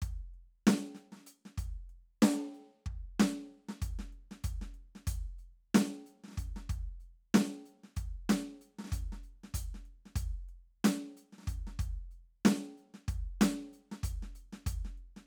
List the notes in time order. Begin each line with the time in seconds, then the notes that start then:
0.02 closed hi-hat, kick
0.34 closed hi-hat
0.67 closed hi-hat, snare
0.95 closed hi-hat, snare
1.12 snare
1.17 snare
1.19 snare
1.26 closed hi-hat
1.45 snare
1.58 closed hi-hat, kick
1.89 closed hi-hat
2.22 closed hi-hat, snare
2.54 closed hi-hat
2.86 kick
3.20 closed hi-hat, snare
3.69 snare
3.82 closed hi-hat, kick
3.99 snare
4.13 closed hi-hat
4.31 snare
4.44 closed hi-hat, kick
4.61 snare
4.74 closed hi-hat
4.95 snare
5.07 closed hi-hat, kick
5.38 closed hi-hat
5.74 closed hi-hat, snare
6.06 closed hi-hat
6.24 snare
6.28 snare
6.31 snare
6.33 snare
6.37 closed hi-hat, kick
6.56 snare
6.69 closed hi-hat, kick
7.00 closed hi-hat
7.34 closed hi-hat, snare
7.65 closed hi-hat
7.84 snare
7.88 snare
7.96 closed hi-hat, kick
8.29 closed hi-hat, snare
8.61 closed hi-hat
8.79 snare
8.84 snare
8.87 snare
8.90 closed hi-hat, kick, snare
9.12 snare
9.23 closed hi-hat
9.43 snare
9.54 closed hi-hat, kick
9.74 snare
9.85 closed hi-hat
10.05 snare
10.16 closed hi-hat, kick
10.49 closed hi-hat
10.84 closed hi-hat, snare
11.17 closed hi-hat
11.32 snare
11.38 snare
11.41 snare
11.43 snare
11.47 closed hi-hat, kick
11.67 snare
11.79 closed hi-hat, kick
12.11 closed hi-hat
12.45 closed hi-hat, snare
12.77 closed hi-hat
12.94 snare
13.08 closed hi-hat, kick
13.41 closed hi-hat, snare
13.73 closed hi-hat
13.91 snare
14.03 closed hi-hat, kick
14.22 snare
14.35 closed hi-hat
14.53 snare
14.66 closed hi-hat, kick
14.85 snare
14.97 closed hi-hat
15.16 snare